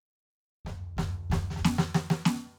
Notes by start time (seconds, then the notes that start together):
0.65 kick, snare, floor tom
0.97 kick, snare, floor tom
1.31 kick, snare, floor tom
1.51 snare
1.57 snare
1.62 kick, snare
1.79 snare
1.95 snare
2.11 snare
2.26 snare